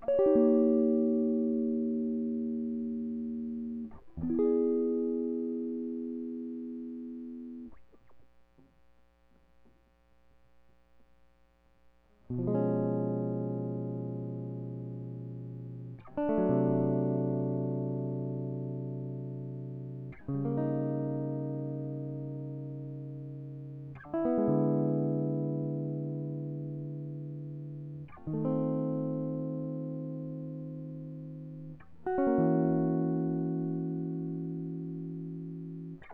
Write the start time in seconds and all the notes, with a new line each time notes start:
0.09 C#5
0.19 G4
0.27 D#4
0.36 A#3
4.22 E2 B3
4.30 E4
4.39 G#4
12.32 B2
12.39 F3
12.48 G#3
12.55 C#4
16.18 D4
16.30 A3
16.39 F#3
16.51 C3
20.30 C#3
20.46 A#3
20.58 D#4
20.68 G3
24.14 E4
24.26 B3
24.39 G#3
24.49 D3
28.28 D#3
28.34 A3
28.45 C4
32.07 F#4
32.19 C#4
32.28 A#3
32.39 E3